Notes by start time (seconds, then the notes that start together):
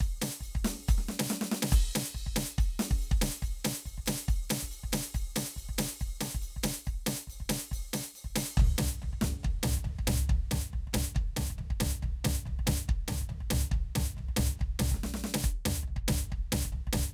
0.01 kick, percussion
0.22 snare, percussion
0.41 kick, percussion
0.56 kick
0.65 snare, percussion
0.89 kick, percussion
0.99 snare
1.09 snare
1.20 snare
1.31 snare
1.42 snare
1.52 snare
1.63 snare
1.73 kick, crash
1.96 snare, percussion
2.15 kick, percussion
2.27 kick
2.37 snare, percussion
2.56 kick, snare, percussion
2.80 snare, percussion
2.91 kick, snare
3.01 percussion
3.12 kick
3.22 snare, percussion
3.37 snare
3.43 kick, percussion
3.65 snare, percussion
3.86 kick, percussion
3.98 kick
4.07 snare, percussion
4.27 kick, snare, percussion
4.50 snare, percussion
4.63 kick, snare
4.72 percussion
4.84 kick
4.93 snare, percussion
5.15 kick, percussion
5.36 snare, percussion
5.57 kick, percussion
5.69 kick
5.78 snare, percussion
6.00 kick, percussion
6.21 snare, percussion
6.35 kick, snare
6.42 percussion
6.57 kick
6.64 snare, percussion
6.86 kick, percussion
7.07 snare, percussion
7.27 kick, snare, percussion
7.41 kick
7.50 snare, percussion
7.72 kick, percussion
7.94 snare, percussion
8.14 snare, percussion
8.25 kick
8.36 snare, percussion
8.58 kick, snare, floor tom
8.79 snare, floor tom
9.02 kick, floor tom
9.22 snare, floor tom
9.41 kick, snare, floor tom
9.63 snare, floor tom
9.78 kick
9.85 floor tom
9.99 kick
10.08 snare, floor tom
10.29 kick, snare, floor tom
10.52 snare, floor tom
10.74 kick, floor tom
10.88 kick
10.94 snare, floor tom
11.15 kick, floor tom
11.37 snare, floor tom
11.51 kick
11.59 floor tom
11.71 kick
11.81 snare, floor tom
12.03 kick, snare, floor tom
12.25 snare, floor tom
12.46 kick, floor tom
12.60 kick
12.67 snare, floor tom
12.89 kick, floor tom
13.08 snare, floor tom
13.22 kick
13.30 floor tom
13.41 kick
13.51 snare, floor tom
13.72 kick, snare, floor tom
13.96 snare, floor tom
14.17 kick, floor tom
14.29 kick
14.37 snare, floor tom
14.56 snare
14.60 kick, floor tom
14.80 snare, floor tom
14.92 kick, snare
15.04 snare
15.14 snare
15.35 snare
15.44 kick
15.66 snare, floor tom
15.74 snare
15.84 kick
15.88 floor tom
15.97 kick
16.08 snare, floor tom
16.28 snare, floor tom
16.32 kick
16.52 snare, floor tom
16.65 kick, snare
16.73 floor tom
16.87 kick
16.93 snare, floor tom